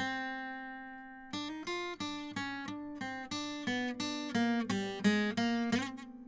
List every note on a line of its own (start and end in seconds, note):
0.00 1.38 C4
1.35 1.50 D4
1.50 1.68 D#4
1.69 1.99 F4
2.02 2.37 D4
2.38 2.77 C#4
2.69 3.09 D4
3.02 3.30 C4
3.33 3.81 D4
3.69 3.98 B3
4.01 4.36 D4
4.36 4.67 A#3
4.71 5.04 G3
5.06 5.36 G#3
5.39 5.73 A#3
5.74 5.87 C4